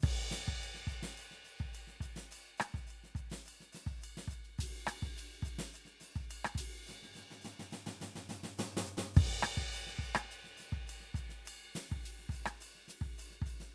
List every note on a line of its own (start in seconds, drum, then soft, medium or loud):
0.01 kick medium
0.01 hi-hat pedal soft
0.01 ride loud
0.30 snare medium
0.30 hi-hat pedal medium
0.47 kick medium
0.47 snare soft
0.60 hi-hat pedal soft
0.60 ride bell medium
0.75 snare soft
0.87 kick soft
0.87 hi-hat pedal medium
0.87 ride soft
1.03 snare medium
1.03 ride soft
1.18 hi-hat pedal medium
1.18 ride bell medium
1.32 snare soft
1.45 snare soft
1.45 hi-hat pedal soft
1.45 ride soft
1.59 kick soft
1.59 ride soft
1.74 hi-hat pedal soft
1.74 ride bell medium
1.88 snare soft
2.01 kick soft
2.01 hi-hat pedal medium
2.01 ride soft
2.16 snare medium
2.16 ride soft
2.31 hi-hat pedal medium
2.31 ride bell medium
2.58 cross-stick medium
2.58 hi-hat pedal medium
2.58 ride bell soft
2.75 kick soft
2.75 snare soft
2.87 hi-hat pedal medium
2.87 ride bell soft
3.04 snare soft
3.15 kick soft
3.15 hi-hat pedal soft
3.15 ride soft
3.30 snare medium
3.30 ride soft
3.46 hi-hat pedal medium
3.46 ride bell medium
3.61 snare soft
3.73 snare soft
3.73 hi-hat pedal medium
3.73 ride soft
3.87 kick soft
3.87 ride soft
4.02 hi-hat pedal soft
4.02 ride bell medium
4.18 snare medium
4.28 kick soft
4.28 hi-hat pedal medium
4.28 ride soft
4.45 snare soft
4.45 ride soft
4.58 kick soft
4.58 hi-hat pedal soft
4.58 ride loud
4.87 cross-stick medium
4.87 hi-hat pedal medium
4.87 ride medium
5.03 kick soft
5.03 snare soft
5.17 hi-hat pedal medium
5.17 ride medium
5.43 kick soft
5.43 hi-hat pedal medium
5.47 ride soft
5.59 snare medium
5.59 ride soft
5.74 hi-hat pedal medium
5.74 ride bell medium
5.86 snare soft
6.01 snare soft
6.01 hi-hat pedal medium
6.01 ride soft
6.16 kick soft
6.16 ride soft
6.30 hi-hat pedal medium
6.30 ride bell medium
6.45 cross-stick medium
6.56 kick soft
6.56 hi-hat pedal medium
6.56 ride loud
6.87 snare soft
6.87 floor tom soft
6.87 hi-hat pedal medium
7.03 snare soft
7.03 floor tom soft
7.14 snare soft
7.14 hi-hat pedal soft
7.18 floor tom soft
7.31 snare soft
7.31 floor tom soft
7.42 snare soft
7.42 floor tom medium
7.42 hi-hat pedal medium
7.60 snare soft
7.60 floor tom medium
7.71 snare medium
7.71 floor tom medium
7.71 hi-hat pedal soft
7.87 snare medium
7.87 floor tom medium
8.01 snare medium
8.01 floor tom medium
8.01 hi-hat pedal soft
8.16 snare medium
8.16 floor tom medium
8.29 snare medium
8.29 floor tom medium
8.29 hi-hat pedal medium
8.44 snare medium
8.44 floor tom medium
8.58 snare medium
8.58 floor tom loud
8.58 hi-hat pedal medium
8.77 snare medium
8.77 floor tom loud
8.86 hi-hat pedal medium
8.98 snare medium
8.98 floor tom medium
9.15 kick loud
9.15 hi-hat pedal medium
9.15 ride loud
9.43 cross-stick medium
9.43 hi-hat pedal soft
9.58 kick medium
9.72 hi-hat pedal medium
9.72 ride soft
9.87 snare soft
9.99 kick soft
9.99 hi-hat pedal medium
9.99 ride bell soft
10.14 cross-stick medium
10.14 ride soft
10.31 hi-hat pedal medium
10.31 ride medium
10.45 snare soft
10.58 snare soft
10.58 hi-hat pedal medium
10.58 ride soft
10.70 kick soft
10.70 snare soft
10.70 ride soft
10.87 hi-hat pedal soft
10.87 ride bell medium
11.01 snare soft
11.15 kick soft
11.15 hi-hat pedal medium
11.15 ride soft
11.30 snare soft
11.30 ride soft
11.46 hi-hat pedal medium
11.46 ride bell loud
11.74 snare medium
11.74 hi-hat pedal soft
11.74 ride medium
11.90 kick soft
11.90 snare soft
12.04 hi-hat pedal soft
12.04 ride medium
12.20 snare soft
12.30 kick soft
12.30 hi-hat pedal medium
12.30 ride soft
12.46 cross-stick medium
12.46 ride soft
12.61 hi-hat pedal medium
12.61 ride bell medium
12.76 snare soft
12.88 snare soft
12.88 hi-hat pedal medium
12.88 ride medium
13.02 kick soft
13.02 ride soft
13.19 hi-hat pedal medium
13.19 ride bell medium
13.31 snare soft
13.42 kick medium
13.46 hi-hat pedal medium
13.46 ride soft
13.60 snare soft
13.60 ride soft